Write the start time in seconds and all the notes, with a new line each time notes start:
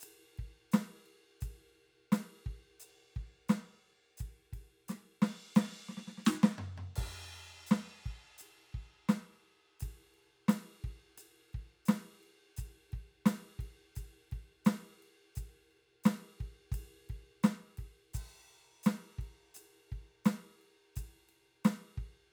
0.01 hi-hat pedal, ride
0.39 kick, ride
0.73 snare, hi-hat pedal, ride
1.07 ride
1.41 kick, hi-hat pedal, ride
2.13 snare, hi-hat pedal, ride
2.47 kick
2.81 hi-hat pedal, ride
3.16 kick, ride
3.49 snare, hi-hat pedal, ride
4.18 kick, hi-hat pedal, ride
4.53 kick, ride
4.89 snare, hi-hat pedal, ride
5.23 snare, ride
5.56 snare, hi-hat pedal, ride
5.89 snare
5.98 snare
6.08 snare
6.18 snare
6.26 snare, hi-hat pedal
6.44 snare
6.59 floor tom
6.78 floor tom
6.97 kick, hi-hat pedal, crash
7.67 hi-hat pedal
7.72 snare, ride
8.07 kick, ride
8.39 hi-hat pedal, ride
8.74 kick, ride
9.09 snare, hi-hat pedal, ride
9.81 kick, hi-hat pedal, ride
10.15 ride
10.49 snare, hi-hat pedal, ride
10.85 kick, ride
11.18 hi-hat pedal, ride
11.54 kick, ride
11.86 snare, hi-hat pedal, ride
12.24 ride
12.57 kick, hi-hat pedal, ride
12.93 kick, ride
13.26 snare, hi-hat pedal, ride
13.60 kick, ride
13.96 kick, hi-hat pedal, ride
14.32 kick, ride
14.66 snare, hi-hat pedal, ride
15.03 ride
15.36 kick, hi-hat pedal, ride
15.72 ride
16.05 snare, hi-hat pedal, ride
16.41 kick, ride
16.73 kick, hi-hat pedal, ride
17.10 kick, ride
17.44 snare, hi-hat pedal, ride
17.78 kick, ride
18.14 kick, hi-hat pedal, crash
18.84 snare, hi-hat pedal, ride
19.19 kick, ride
19.55 hi-hat pedal, ride
19.93 kick, ride
20.26 snare, hi-hat pedal, ride
20.62 ride
20.97 kick, hi-hat pedal, ride
21.30 ride
21.65 snare, hi-hat pedal, ride
21.98 kick, ride